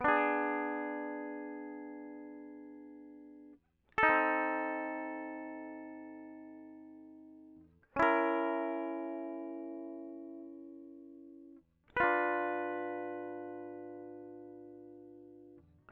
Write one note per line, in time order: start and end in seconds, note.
0.01 3.58 B3
0.01 3.58 D4
0.09 3.41 G#4
3.98 6.38 A4
4.03 7.69 D#4
4.10 7.66 C4
7.97 11.62 C#4
7.97 11.62 E4
8.03 10.82 A#4
11.97 15.63 F4
11.97 15.60 B4
12.04 15.64 D4